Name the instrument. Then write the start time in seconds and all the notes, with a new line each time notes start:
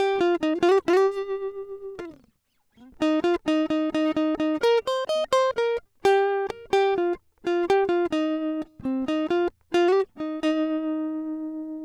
acoustic guitar
0.01 G4
0.22 F4
0.44 D#4
0.64 G4
0.89 G4
3.03 D#4
3.26 F4
3.49 D#4
3.72 D#4
3.96 D#4
4.18 D#4
4.41 D#4
4.65 A#4
4.89 C5
5.11 D#5
5.34 C5
5.60 A#4
6.06 G4
6.51 A#4
6.74 G4
7.00 F4
7.48 F4
7.71 G4
7.90 F4
8.14 D#4
8.87 C4
9.10 D#4
9.32 F4
9.76 F4
9.90 G4
10.22 D#4
10.45 D#4